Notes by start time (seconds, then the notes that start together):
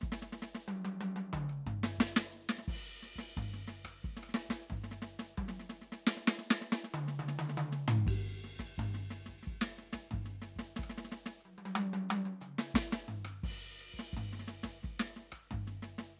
0.01 kick, snare
0.11 kick, snare
0.32 snare
0.42 snare
0.55 snare
0.68 high tom
0.85 high tom
1.01 high tom
1.16 open hi-hat, high tom
1.33 kick, mid tom
1.49 cross-stick
1.66 kick, floor tom
1.83 snare
1.98 kick, snare
2.16 snare
2.32 floor tom
2.49 snare
2.58 snare
2.68 kick, crash
3.01 snare, hi-hat pedal
3.16 kick, snare
3.37 kick, floor tom
3.53 snare
3.68 snare
3.84 kick, cross-stick
4.03 kick, snare
4.12 snare
4.17 snare
4.23 cross-stick
4.29 snare
4.34 snare
4.39 hi-hat pedal
4.49 kick, snare
4.70 kick, floor tom
4.84 snare
4.91 snare
5.02 snare, hi-hat pedal
5.19 snare
5.38 kick, high tom
5.48 snare
5.60 snare
5.69 snare
5.81 snare
5.92 snare
6.07 snare
6.17 snare
6.27 snare
6.38 snare
6.50 snare
6.61 snare
6.72 snare
6.84 snare
6.94 mid tom
7.08 snare
7.19 hi-hat pedal, mid tom
7.28 snare
7.39 mid tom
7.45 hi-hat pedal
7.49 snare
7.57 mid tom
7.72 snare
7.88 floor tom
8.07 kick, ride
8.44 snare
8.59 kick, snare
8.78 kick, floor tom
8.94 snare
9.10 snare, hi-hat pedal
9.26 kick, snare
9.43 snare
9.47 kick
9.61 snare
9.76 snare, hi-hat pedal
9.93 kick, snare
10.11 kick, floor tom
10.25 snare
10.42 snare, hi-hat pedal
10.56 kick, snare
10.76 kick, snare, hi-hat pedal
10.83 cross-stick
10.89 snare
10.98 snare
11.04 snare, hi-hat pedal
11.12 snare
11.26 snare
11.38 hi-hat pedal
11.45 high tom
11.58 high tom
11.65 hi-hat pedal, high tom
11.75 high tom
11.93 high tom
12.09 hi-hat pedal, high tom
12.25 high tom
12.41 hi-hat pedal, mid tom
12.58 snare
12.74 kick, snare
12.92 snare
13.08 floor tom
13.25 cross-stick
13.44 kick, crash
13.81 cross-stick
13.94 kick
13.99 snare
14.13 kick, floor tom
14.33 snare
14.39 snare
14.46 snare, hi-hat pedal
14.63 kick, snare
14.83 kick, snare
14.99 snare
15.15 snare, hi-hat pedal
15.32 kick, cross-stick
15.51 kick, floor tom
15.67 snare
15.82 snare, hi-hat pedal
15.98 snare